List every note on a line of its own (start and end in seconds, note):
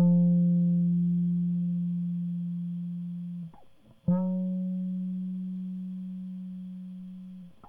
0.00 3.50 F3
4.09 4.20 F3
4.19 7.46 F#3